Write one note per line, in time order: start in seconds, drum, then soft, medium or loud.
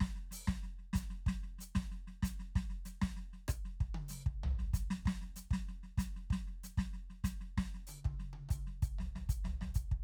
0.01 kick medium
0.01 snare medium
0.16 snare soft
0.32 snare soft
0.32 hi-hat pedal medium
0.48 kick medium
0.48 snare medium
0.64 snare soft
0.79 snare soft
0.94 kick medium
0.94 snare medium
0.94 hi-hat pedal medium
1.11 snare soft
1.27 kick medium
1.27 snare medium
1.44 snare soft
1.59 snare soft
1.59 hi-hat pedal medium
1.76 kick medium
1.76 snare medium
1.92 snare soft
2.08 snare soft
2.23 kick soft
2.23 snare medium
2.23 hi-hat pedal medium
2.40 snare soft
2.56 kick medium
2.56 snare medium
2.70 snare soft
2.86 snare soft
2.86 hi-hat pedal medium
3.02 kick soft
3.02 snare medium
3.17 snare soft
3.34 snare soft
3.49 kick medium
3.49 cross-stick medium
3.49 hi-hat pedal medium
3.66 snare soft
3.81 kick soft
3.81 snare soft
3.95 open hi-hat soft
3.95 high tom medium
4.09 snare soft
4.09 hi-hat pedal medium
4.27 kick soft
4.27 snare soft
4.44 floor tom loud
4.59 snare soft
4.74 kick soft
4.74 snare soft
4.74 hi-hat pedal medium
4.91 snare medium
5.06 kick soft
5.06 snare medium
5.22 snare soft
5.37 snare soft
5.37 hi-hat pedal medium
5.51 kick soft
5.51 snare medium
5.69 snare soft
5.84 snare soft
5.98 kick soft
5.98 snare medium
5.98 hi-hat pedal medium
6.17 snare soft
6.31 kick soft
6.31 snare medium
6.48 snare soft
6.64 snare soft
6.64 hi-hat pedal medium
6.78 kick soft
6.78 snare medium
6.94 snare soft
7.11 snare soft
7.25 kick soft
7.25 snare medium
7.25 hi-hat pedal medium
7.41 snare soft
7.58 kick soft
7.58 snare medium
7.75 snare soft
7.87 hi-hat pedal medium
7.87 high tom medium
8.05 kick soft
8.05 high tom medium
8.20 snare soft
8.34 high tom medium
8.50 kick soft
8.50 hi-hat pedal medium
8.50 high tom medium
8.67 snare soft
8.83 kick medium
8.83 hi-hat pedal medium
8.99 snare soft
8.99 floor tom medium
9.16 snare soft
9.16 floor tom medium
9.30 kick soft
9.30 hi-hat pedal medium
9.45 snare soft
9.45 floor tom medium
9.62 snare soft
9.62 floor tom medium
9.75 kick soft
9.75 hi-hat pedal medium
9.92 kick soft